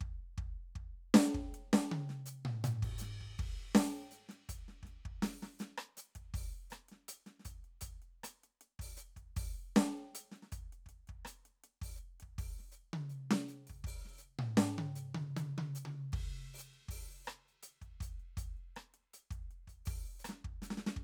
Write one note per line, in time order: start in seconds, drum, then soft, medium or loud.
0.01 kick medium
0.38 kick medium
0.76 kick soft
1.14 snare loud
1.21 snare soft
1.35 kick soft
1.54 closed hi-hat soft
1.73 snare medium
1.92 high tom loud
2.09 snare soft
2.26 hi-hat pedal medium
2.45 mid tom loud
2.64 hi-hat pedal medium
2.64 mid tom loud
2.83 kick medium
2.83 ride medium
2.98 snare soft
2.98 hi-hat pedal medium
3.21 kick soft
3.39 kick medium
3.39 crash soft
3.75 open hi-hat medium
3.75 snare loud
4.11 hi-hat pedal soft
4.15 closed hi-hat soft
4.29 snare soft
4.29 closed hi-hat soft
4.49 closed hi-hat medium
4.49 kick soft
4.68 snare soft
4.83 kick soft
4.83 snare soft
4.87 closed hi-hat soft
5.05 kick soft
5.23 open hi-hat medium
5.23 snare medium
5.43 snare soft
5.59 snare soft
5.59 hi-hat pedal soft
5.78 cross-stick medium
5.97 hi-hat pedal medium
6.15 kick soft
6.15 closed hi-hat soft
6.34 open hi-hat medium
6.34 kick medium
6.70 cross-stick medium
6.70 closed hi-hat soft
6.70 hi-hat pedal soft
6.89 snare soft
6.89 closed hi-hat soft
7.08 closed hi-hat medium
7.26 snare soft
7.26 closed hi-hat soft
7.40 snare soft
7.45 closed hi-hat soft
7.45 kick soft
7.64 closed hi-hat soft
7.81 closed hi-hat medium
7.81 kick soft
8.02 closed hi-hat soft
8.24 closed hi-hat medium
8.24 cross-stick medium
8.44 closed hi-hat soft
8.61 closed hi-hat soft
8.79 open hi-hat medium
8.79 kick soft
8.97 closed hi-hat soft
8.97 hi-hat pedal medium
9.17 kick soft
9.17 closed hi-hat soft
9.37 open hi-hat medium
9.37 kick medium
9.76 snare loud
9.76 hi-hat pedal soft
9.97 closed hi-hat soft
10.15 closed hi-hat medium
10.32 snare soft
10.36 closed hi-hat soft
10.43 snare soft
10.52 closed hi-hat medium
10.52 kick soft
10.73 closed hi-hat soft
10.86 kick soft
10.86 closed hi-hat soft
11.08 kick soft
11.08 closed hi-hat soft
11.25 closed hi-hat medium
11.25 cross-stick medium
11.45 closed hi-hat soft
11.64 closed hi-hat soft
11.82 open hi-hat medium
11.82 kick soft
11.96 hi-hat pedal soft
12.20 kick soft
12.20 closed hi-hat soft
12.38 open hi-hat medium
12.38 kick medium
12.59 snare soft
12.72 hi-hat pedal soft
12.93 high tom medium
13.10 hi-hat pedal soft
13.31 snare medium
13.49 snare soft
13.49 hi-hat pedal soft
13.67 kick soft
13.67 open hi-hat soft
13.84 open hi-hat medium
13.84 kick soft
14.05 snare soft
14.18 hi-hat pedal soft
14.39 mid tom loud
14.57 snare medium
14.57 hi-hat pedal soft
14.78 high tom medium
14.96 hi-hat pedal medium
15.15 high tom medium
15.37 hi-hat pedal soft
15.37 high tom medium
15.58 high tom medium
15.75 hi-hat pedal medium
15.85 high tom medium
16.12 kick medium
16.12 crash soft
16.54 open hi-hat medium
16.58 hi-hat pedal medium
16.74 closed hi-hat soft
16.89 open hi-hat medium
16.89 kick soft
17.25 cross-stick medium
17.25 hi-hat pedal soft
17.30 closed hi-hat soft
17.48 closed hi-hat soft
17.63 closed hi-hat medium
17.82 kick soft
17.82 closed hi-hat soft
18.01 closed hi-hat soft
18.01 kick soft
18.20 closed hi-hat soft
18.37 closed hi-hat medium
18.37 kick medium
18.57 closed hi-hat soft
18.76 cross-stick medium
18.76 closed hi-hat soft
18.94 closed hi-hat soft
19.14 closed hi-hat medium
19.31 kick soft
19.31 closed hi-hat soft
19.51 closed hi-hat soft
19.68 closed hi-hat soft
19.68 kick soft
19.86 open hi-hat medium
19.86 kick medium
20.20 hi-hat pedal soft
20.25 closed hi-hat medium
20.25 cross-stick medium
20.29 snare soft
20.45 kick soft
20.62 snare soft
20.62 hi-hat pedal medium
20.71 snare soft
20.78 snare soft
20.87 snare medium
20.97 kick soft